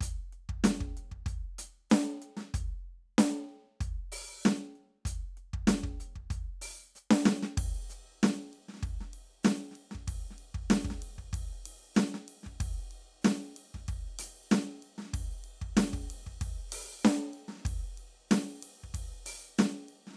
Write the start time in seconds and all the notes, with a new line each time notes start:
0.01 closed hi-hat, kick
0.33 closed hi-hat
0.49 kick
0.64 closed hi-hat, snare
0.81 kick
0.97 closed hi-hat
1.12 kick
1.26 closed hi-hat, kick
1.59 open hi-hat
1.90 closed hi-hat, snare, hi-hat pedal
2.22 closed hi-hat
2.37 snare
2.41 snare
2.49 snare
2.53 closed hi-hat, kick, snare
3.19 closed hi-hat, snare
3.49 closed hi-hat
3.81 closed hi-hat, kick
4.12 open hi-hat
4.45 snare, hi-hat pedal
4.76 closed hi-hat
5.06 closed hi-hat, kick
5.37 closed hi-hat
5.54 kick
5.68 closed hi-hat, snare
5.84 kick
6.00 closed hi-hat
6.16 kick
6.31 closed hi-hat, kick
6.62 open hi-hat
6.95 hi-hat pedal, open hi-hat
7.11 snare
7.26 snare
7.43 snare
7.58 kick, ride
7.90 hi-hat pedal, ride
8.23 snare, ride
8.53 ride
8.69 snare
8.74 snare
8.77 snare
8.81 kick, snare, ride
9.01 snare
9.14 ride
9.44 snare, hi-hat pedal, ride
9.72 snare
9.76 ride
9.91 kick, snare
10.08 kick, ride
10.31 snare
10.39 ride
10.55 kick
10.70 snare, ride
10.85 kick
10.91 snare
11.02 ride
11.18 kick
11.33 kick, ride
11.66 ride
11.95 snare, hi-hat pedal, ride
12.14 snare
12.28 ride
12.44 kick, snare
12.61 kick, ride
12.91 ride
13.22 snare, hi-hat pedal, ride
13.57 ride
13.74 kick, snare
13.89 kick, ride
14.19 open hi-hat, ride
14.52 snare, hi-hat pedal, ride
14.83 ride
14.98 snare
15.02 snare
15.05 snare
15.08 snare
15.12 kick, snare, ride
15.44 ride
15.62 kick
15.77 snare, ride
15.94 kick
16.11 ride
16.27 kick
16.41 kick, ride
16.69 open hi-hat, hi-hat pedal, ride
17.04 snare, hi-hat pedal, ride
17.34 ride
17.49 snare
17.53 snare
17.55 snare
17.58 snare
17.60 snare
17.63 kick, snare, ride
17.98 ride
18.28 snare, hi-hat pedal, ride
18.63 ride
18.84 kick
18.94 kick, ride
19.26 open hi-hat, ride
19.58 snare, hi-hat pedal, ride
19.89 ride
20.07 snare
20.11 snare
20.14 snare